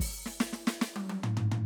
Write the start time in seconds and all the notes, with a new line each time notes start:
0.00 open hi-hat, kick
0.26 snare
0.40 snare
0.53 snare
0.67 snare
0.82 snare
0.96 high tom
1.10 high tom
1.24 floor tom
1.37 floor tom
1.52 floor tom